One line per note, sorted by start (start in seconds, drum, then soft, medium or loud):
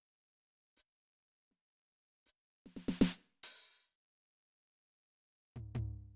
0.77 hi-hat pedal soft
1.51 snare soft
2.26 hi-hat pedal soft
2.66 snare soft
2.76 snare soft
2.88 snare medium
3.01 snare loud
3.43 open hi-hat loud
5.56 floor tom soft
5.75 floor tom medium